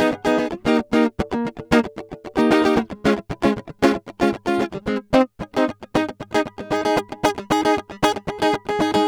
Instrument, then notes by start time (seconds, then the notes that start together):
acoustic guitar
0.00 B3 D#4 G#4
0.26 B3 D#4 G#4
0.39 B3 D#4 G#4
0.67 A#3 D#4 G4
0.94 A#3 D#4 G4
1.35 A#3
1.73 A#3 D#4
2.38 A#3 D#4 G4
2.52 A#3 D#4 G4
2.65 A#3 D#4 G4
2.78 A3
3.07 G#3 C#4 F4
3.45 G#3 C#4 F4
3.84 G#3 C#4 F4
4.22 G#3 C#4 F4
4.48 G#3 C#4 F4
4.61 G#3 C4 F4
4.76 G3
4.88 G#3 C4 D#4
5.14 C4 D#4
5.55 C4 D#4 G#4
5.97 D#4 G#4
6.36 D#4 G#4
6.61 D#4
6.73 D#4 G#4
6.87 D#4 G#4
7.26 D#4 G#4
7.52 D#4 G#4
7.67 D#4 G#4
8.05 D#4 G#4
8.30 G#4
8.43 D#4 G#4
8.70 G#4
8.82 D#4 G#4
8.96 G#3 D#4